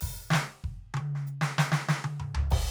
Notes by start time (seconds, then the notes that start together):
0.01 open hi-hat, kick
0.31 snare
0.34 snare
0.64 kick
0.94 high tom
0.97 high tom
1.15 snare
1.27 hi-hat pedal
1.41 snare
1.58 snare
1.72 snare
1.89 snare, hi-hat pedal
2.04 high tom
2.20 mid tom
2.35 kick, floor tom
2.51 kick, crash